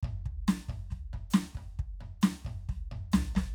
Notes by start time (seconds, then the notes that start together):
0.03 kick, mid tom
0.26 kick, mid tom
0.48 snare, hi-hat pedal
0.69 kick, mid tom
0.91 kick, snare
1.14 kick, mid tom
1.31 snare, hi-hat pedal
1.55 kick, mid tom
1.80 kick
2.01 mid tom
2.22 snare, hi-hat pedal
2.45 kick, mid tom
2.69 kick, snare
2.92 mid tom
3.12 snare, floor tom, hi-hat pedal
3.36 snare, floor tom